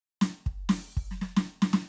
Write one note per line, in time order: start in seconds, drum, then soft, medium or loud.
0.22 closed hi-hat loud
0.22 snare loud
0.47 kick medium
0.69 open hi-hat loud
0.69 snare loud
0.97 kick medium
1.11 snare medium
1.22 snare loud
1.37 snare loud
1.62 snare loud
1.67 hi-hat pedal soft
1.74 snare loud